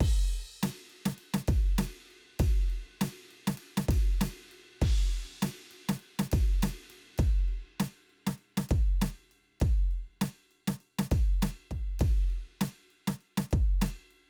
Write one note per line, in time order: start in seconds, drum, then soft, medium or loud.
0.00 kick loud
0.00 crash loud
0.63 snare loud
0.63 ride loud
0.90 ride soft
1.05 snare loud
1.18 ride medium
1.34 snare loud
1.48 kick loud
1.48 ride loud
1.78 snare loud
1.78 ride loud
2.10 ride soft
2.39 kick loud
2.39 ride loud
2.70 ride soft
3.01 snare loud
3.01 ride loud
3.31 ride soft
3.47 snare loud
3.57 ride medium
3.77 snare loud
3.88 kick loud
3.88 ride loud
4.21 snare loud
4.21 ride loud
4.51 ride medium
4.81 kick loud
4.81 ride loud
5.13 ride soft
5.42 snare loud
5.42 ride loud
5.71 ride medium
5.89 snare loud
5.99 ride medium
6.19 snare loud
6.32 kick loud
6.32 ride loud
6.62 snare loud
6.62 ride loud
6.90 ride medium
7.18 kick loud
7.18 ride bell medium
7.48 ride bell soft
7.80 snare loud
7.80 ride bell medium
8.09 ride bell soft
8.27 snare loud
8.38 ride bell soft
8.57 snare loud
8.69 kick loud
8.69 ride bell medium
9.01 snare loud
9.01 ride bell medium
9.31 ride bell soft
9.60 kick loud
9.60 ride bell medium
9.91 ride bell soft
10.21 snare loud
10.21 ride bell medium
10.51 ride bell soft
10.67 snare loud
10.80 ride bell soft
10.98 snare loud
11.11 kick loud
11.11 ride bell loud
11.42 snare loud
11.42 ride bell loud
11.71 kick medium
11.71 ride soft
11.99 kick soft
11.99 kick loud
11.99 snare soft
11.99 ride loud
12.30 ride bell soft
12.61 snare loud
12.61 ride bell loud
12.90 ride bell soft
13.07 snare loud
13.21 ride bell soft
13.37 snare loud
13.51 kick loud
13.51 ride bell medium
13.81 snare loud
13.81 ride bell loud
14.11 ride soft